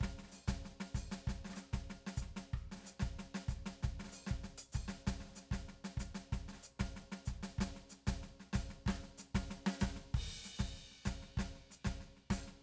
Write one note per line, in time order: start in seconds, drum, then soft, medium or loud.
0.01 kick soft
0.01 snare medium
0.19 snare soft
0.24 snare soft
0.28 snare soft
0.32 snare soft
0.32 hi-hat pedal medium
0.48 kick medium
0.48 snare medium
0.65 snare soft
0.81 snare medium
0.95 kick soft
0.95 snare soft
0.95 hi-hat pedal medium
1.12 snare medium
1.27 kick soft
1.27 snare medium
1.45 snare soft
1.50 cross-stick soft
1.50 snare soft
1.56 snare soft
1.56 hi-hat pedal medium
1.73 kick soft
1.73 snare medium
1.90 snare soft
2.07 snare medium
2.17 kick soft
2.17 hi-hat pedal medium
2.22 snare soft
2.37 snare medium
2.54 kick soft
2.54 cross-stick soft
2.72 snare soft
2.76 snare soft
2.80 snare soft
2.84 snare soft
2.86 snare soft
2.86 hi-hat pedal medium
3.00 kick medium
3.00 snare medium
3.19 snare soft
3.35 snare medium
3.49 kick soft
3.49 snare soft
3.49 hi-hat pedal medium
3.57 kick soft
3.66 snare medium
3.83 kick medium
3.83 snare soft
4.00 snare soft
4.04 snare soft
4.08 snare soft
4.12 snare soft
4.12 hi-hat pedal medium
4.27 snare medium
4.31 kick soft
4.44 snare soft
4.58 closed hi-hat medium
4.73 kick soft
4.73 snare soft
4.73 hi-hat pedal medium
4.88 snare medium
5.07 kick soft
5.07 snare medium
5.20 snare soft
5.25 snare soft
5.28 snare soft
5.32 snare soft
5.32 hi-hat pedal medium
5.37 snare soft
5.52 kick soft
5.52 snare medium
5.69 snare soft
5.85 snare medium
5.97 kick soft
5.97 snare soft
5.97 hi-hat pedal medium
6.15 snare medium
6.33 kick soft
6.33 snare soft
6.49 snare soft
6.53 snare soft
6.56 snare soft
6.63 hi-hat pedal medium
6.80 kick soft
6.80 snare medium
6.96 snare soft
7.12 snare medium
7.26 kick soft
7.26 snare soft
7.26 hi-hat pedal medium
7.43 snare medium
7.59 kick soft
7.59 snare medium
7.76 snare soft
7.90 snare soft
7.90 hi-hat pedal medium
8.07 kick medium
8.07 snare medium
8.23 snare soft
8.40 snare soft
8.53 kick medium
8.53 snare medium
8.53 hi-hat pedal medium
8.70 snare soft
8.87 kick soft
8.87 snare medium
9.04 snare soft
9.18 snare soft
9.18 hi-hat pedal loud
9.35 kick medium
9.35 snare medium
9.51 snare soft
9.67 snare medium
9.80 kick soft
9.80 snare medium
9.80 hi-hat pedal medium
9.96 snare soft
10.14 kick medium
10.14 ride medium
10.29 snare soft
10.44 snare soft
10.44 hi-hat pedal medium
10.59 kick soft
10.59 snare medium
10.77 snare soft
10.92 snare soft
11.05 kick soft
11.05 snare medium
11.05 hi-hat pedal medium
11.22 snare soft
11.37 kick soft
11.37 snare medium
11.56 snare soft
11.71 snare soft
11.71 hi-hat pedal medium
11.85 kick soft
11.85 snare medium
12.01 snare soft
12.17 snare soft
12.30 kick soft
12.30 snare medium
12.30 hi-hat pedal medium
12.48 snare soft